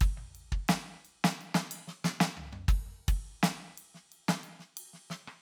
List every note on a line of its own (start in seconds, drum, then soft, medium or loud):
0.01 kick loud
0.01 ride medium
0.17 floor tom soft
0.35 ride soft
0.52 kick medium
0.69 snare loud
0.69 ride medium
1.05 ride bell soft
1.24 snare loud
1.29 hi-hat pedal medium
1.41 ride soft
1.55 snare loud
1.71 ride bell medium
1.88 snare medium
2.04 snare loud
2.04 hi-hat pedal soft
2.21 snare loud
2.37 mid tom medium
2.53 high tom medium
2.68 kick loud
2.68 crash medium
2.87 high tom soft
3.08 kick loud
3.08 ride medium
3.43 snare loud
3.43 hi-hat pedal medium
3.43 ride medium
3.78 ride medium
3.95 snare soft
4.12 ride soft
4.29 snare loud
4.44 ride soft
4.60 snare soft
4.77 ride loud
4.93 snare soft
5.10 snare medium
5.28 cross-stick medium